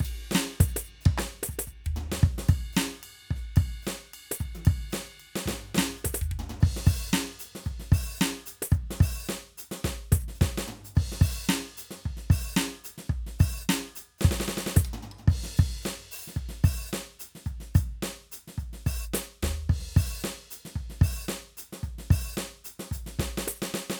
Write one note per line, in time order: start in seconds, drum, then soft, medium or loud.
0.01 kick medium
0.05 ride loud
0.31 snare loud
0.31 hi-hat pedal medium
0.35 snare loud
0.61 kick loud
0.61 high tom loud
0.77 high tom loud
1.01 hi-hat pedal medium
1.06 kick loud
1.06 high tom loud
1.18 cross-stick medium
1.18 snare loud
1.18 hi-hat pedal soft
1.43 high tom loud
1.49 kick medium
1.59 high tom loud
1.68 kick soft
1.85 hi-hat pedal soft
1.85 mid tom loud
1.96 floor tom loud
2.12 snare loud
2.23 kick loud
2.38 snare medium
2.49 kick loud
2.49 ride bell loud
2.73 snare loud
2.73 hi-hat pedal medium
3.03 ride bell loud
3.31 kick medium
3.36 snare soft
3.56 kick loud
3.56 ride bell loud
3.83 hi-hat pedal medium
3.87 snare loud
4.14 ride bell loud
4.32 high tom loud
4.40 kick medium
4.40 ride soft
4.55 high tom loud
4.65 kick loud
4.65 ride bell loud
4.90 snare loud
4.90 hi-hat pedal medium
4.90 ride bell loud
5.20 ride bell medium
5.36 snare loud
5.46 kick medium
5.46 snare loud
5.46 floor tom loud
5.75 kick soft
5.75 snare loud
5.78 snare loud
5.98 hi-hat pedal soft
6.05 kick medium
6.05 high tom loud
6.15 high tom loud
6.22 mid tom loud
6.32 mid tom loud
6.39 floor tom loud
6.50 floor tom loud
6.61 kick loud
6.61 crash loud
6.77 snare medium
6.86 open hi-hat loud
6.86 kick loud
7.09 hi-hat pedal medium
7.14 snare loud
7.39 closed hi-hat loud
7.55 snare medium
7.64 closed hi-hat soft
7.64 kick medium
7.80 snare medium
7.92 open hi-hat loud
7.92 kick loud
8.18 snare loud
8.18 hi-hat pedal medium
8.46 closed hi-hat loud
8.62 high tom loud
8.72 kick loud
8.72 closed hi-hat medium
8.91 snare medium
9.01 open hi-hat loud
9.01 kick loud
9.27 snare loud
9.27 hi-hat pedal medium
9.58 closed hi-hat loud
9.72 snare loud
9.85 kick medium
9.85 snare loud
10.12 kick loud
10.12 high tom loud
10.29 snare medium
10.35 hi-hat pedal medium
10.41 kick loud
10.41 snare loud
10.58 snare loud
10.68 floor tom loud
10.85 closed hi-hat medium
10.96 kick loud
10.96 crash loud
11.12 snare medium
11.22 open hi-hat loud
11.22 kick loud
11.46 snare loud
11.46 hi-hat pedal medium
11.77 closed hi-hat loud
11.91 snare medium
12.03 kick medium
12.03 closed hi-hat soft
12.17 snare medium
12.30 open hi-hat loud
12.30 kick loud
12.54 snare loud
12.54 hi-hat pedal medium
12.84 closed hi-hat loud
12.98 snare medium
13.10 kick medium
13.10 closed hi-hat soft
13.27 snare medium
13.39 open hi-hat loud
13.39 kick loud
13.62 hi-hat pedal medium
13.69 closed hi-hat loud
13.69 snare loud
13.95 closed hi-hat loud
14.19 snare loud
14.19 hi-hat pedal medium
14.25 kick loud
14.40 snare loud
14.48 snare loud
14.58 snare loud
14.67 snare loud
14.73 kick loud
14.73 hi-hat pedal medium
14.73 high tom loud
14.85 high tom medium
14.94 floor tom loud
15.03 floor tom loud
15.12 floor tom soft
15.19 floor tom medium
15.28 kick loud
15.28 crash loud
15.44 snare medium
15.58 kick loud
15.58 ride loud
15.83 snare loud
15.83 hi-hat pedal medium
16.11 open hi-hat loud
16.28 snare medium
16.28 hi-hat pedal medium
16.34 closed hi-hat medium
16.34 kick medium
16.49 snare medium
16.64 open hi-hat loud
16.64 kick loud
16.89 hi-hat pedal medium
16.93 snare loud
17.20 closed hi-hat loud
17.35 snare medium
17.45 closed hi-hat soft
17.45 kick medium
17.61 snare medium
17.75 closed hi-hat loud
17.75 kick loud
18.03 snare loud
18.32 closed hi-hat loud
18.48 snare medium
18.58 closed hi-hat soft
18.58 kick medium
18.73 snare medium
18.86 open hi-hat loud
18.86 kick loud
19.04 hi-hat pedal medium
19.14 snare loud
19.14 high tom loud
19.43 snare loud
19.43 mid tom loud
19.70 kick loud
19.70 crash loud
19.80 snare soft
19.86 snare soft
19.97 open hi-hat loud
19.97 kick loud
20.21 snare loud
20.21 hi-hat pedal medium
20.51 closed hi-hat loud
20.65 snare medium
20.76 kick medium
20.76 closed hi-hat soft
20.90 snare medium
21.02 open hi-hat loud
21.02 kick loud
21.25 snare loud
21.25 hi-hat pedal medium
21.57 closed hi-hat loud
21.73 snare medium
21.83 closed hi-hat medium
21.83 kick medium
21.99 snare medium
22.11 open hi-hat loud
22.11 kick loud
22.34 snare loud
22.34 hi-hat pedal medium
22.65 closed hi-hat loud
22.80 snare medium
22.92 closed hi-hat loud
22.92 kick medium
23.07 snare medium
23.19 kick medium
23.19 snare loud
23.19 hi-hat pedal soft
23.38 snare loud
23.38 hi-hat pedal soft
23.48 high tom loud
23.56 hi-hat pedal soft
23.62 snare loud
23.74 snare loud
23.90 snare loud